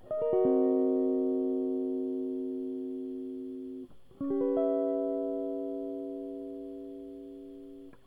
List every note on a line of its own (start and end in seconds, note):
0.11 2.32 D#5
0.21 3.43 A#4
0.34 3.90 F#4
0.46 3.89 C4
4.19 7.94 C#4
4.30 7.88 G4
4.40 6.99 B4
4.58 7.10 E5